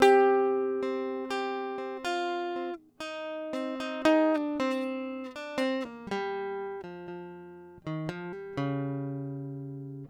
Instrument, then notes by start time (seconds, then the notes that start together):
acoustic guitar
0.01 C4 G4
0.83 C4
1.31 G4
1.79 C4
2.05 F4
2.57 C4
2.75 D#4
3.01 D#4
3.54 C4
3.81 D#4
4.06 D#4 G#4
4.36 D4
4.61 C4
4.73 D3
5.36 D4
5.58 C4
5.82 A#3
6.13 G3
6.82 F3
7.09 F3
7.87 D#3
8.10 F3
8.34 G3
8.58 C#3 G3